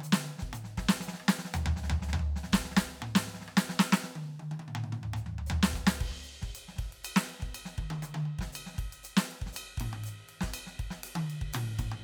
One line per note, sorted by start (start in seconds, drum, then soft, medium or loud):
0.01 hi-hat pedal medium
0.01 high tom medium
0.13 snare loud
0.25 hi-hat pedal soft
0.25 high tom medium
0.39 kick soft
0.39 snare soft
0.54 hi-hat pedal medium
0.54 mid tom medium
0.65 snare soft
0.78 kick soft
0.78 snare medium
0.89 snare loud
1.01 snare medium
1.01 hi-hat pedal medium
1.09 snare medium
1.14 snare soft
1.21 cross-stick medium
1.21 hi-hat pedal soft
1.29 snare loud
1.39 snare medium
1.45 snare medium
1.54 hi-hat pedal medium
1.54 floor tom loud
1.66 floor tom loud
1.77 snare soft
1.84 snare soft
1.90 floor tom loud
2.03 snare medium
2.09 snare soft
2.14 floor tom loud
2.20 floor tom medium
2.36 snare soft
2.44 snare soft
2.53 kick soft
2.53 snare loud
2.59 kick soft
2.65 snare soft
2.72 snare soft
2.77 kick soft
2.77 snare loud
2.89 snare soft
2.93 snare soft
3.03 mid tom loud
3.16 snare loud
3.28 snare soft
3.35 snare soft
3.40 snare soft
3.42 snare soft
3.48 cross-stick medium
3.53 cross-stick soft
3.58 snare loud
3.70 snare medium
3.80 snare loud
3.93 snare loud
4.04 snare medium
4.16 high tom loud
4.40 high tom medium
4.52 high tom medium
4.60 high tom medium
4.68 mid tom medium
4.76 mid tom loud
4.84 mid tom medium
4.93 mid tom loud
5.04 floor tom medium
5.14 hi-hat pedal soft
5.14 mid tom medium
5.27 floor tom medium
5.39 floor tom medium
5.47 kick soft
5.47 hi-hat pedal medium
5.47 floor tom loud
5.63 snare loud
5.74 kick soft
5.74 hi-hat pedal medium
5.74 floor tom medium
5.87 snare loud
6.01 kick medium
6.01 ride medium
6.12 kick soft
6.12 cross-stick soft
6.14 kick soft
6.19 snare soft
6.24 hi-hat pedal medium
6.42 kick soft
6.42 snare soft
6.50 kick soft
6.56 hi-hat pedal medium
6.56 ride bell medium
6.69 snare soft
6.77 kick soft
6.77 snare soft
6.77 ride medium
6.81 snare soft
6.84 kick soft
6.84 snare soft
6.93 ride medium
7.04 hi-hat pedal medium
7.04 ride bell loud
7.17 snare loud
7.30 ride soft
7.40 kick soft
7.40 snare soft
7.55 hi-hat pedal medium
7.55 ride bell loud
7.66 snare soft
7.78 kick soft
7.78 high tom medium
7.84 kick soft
7.91 high tom loud
8.03 hi-hat pedal medium
8.03 high tom medium
8.15 high tom loud
8.26 high tom soft
8.39 kick soft
8.39 snare medium
8.50 kick soft
8.50 hi-hat pedal medium
8.56 ride bell loud
8.67 snare soft
8.75 kick medium
8.75 snare soft
8.80 snare soft
8.80 ride medium
8.84 kick soft
8.84 snare soft
8.88 snare soft
8.93 ride bell medium
9.04 hi-hat pedal medium
9.04 ride bell medium
9.17 snare loud
9.32 ride medium
9.42 kick soft
9.47 kick soft
9.47 snare soft
9.53 hi-hat pedal medium
9.53 ride bell loud
9.78 kick soft
9.78 mid tom loud
9.78 ride loud
9.93 mid tom medium
10.04 hi-hat pedal medium
10.04 ride medium
10.28 hi-hat pedal soft
10.28 ride medium
10.41 kick soft
10.41 snare medium
10.54 hi-hat pedal medium
10.54 ride bell loud
10.67 snare soft
10.80 kick soft
10.80 ride medium
10.91 snare medium
11.04 hi-hat pedal medium
11.04 ride loud
11.16 high tom loud
11.30 ride bell medium
11.42 kick soft
11.51 kick soft
11.51 hi-hat pedal medium
11.51 ride loud
11.55 mid tom loud
11.79 kick medium
11.79 mid tom loud
11.79 ride bell medium
11.85 kick soft
11.92 mid tom medium